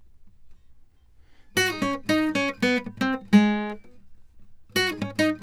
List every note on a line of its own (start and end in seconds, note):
1.57 1.68 F#4
1.68 1.90 D#4
1.83 2.04 C#4
2.10 2.36 D#4
2.36 2.58 C#4
2.63 2.83 B3
3.02 3.28 C4
3.33 3.77 G#3
4.77 4.88 F#4
4.88 4.96 D#4
5.03 5.16 C#4
5.20 5.39 D#4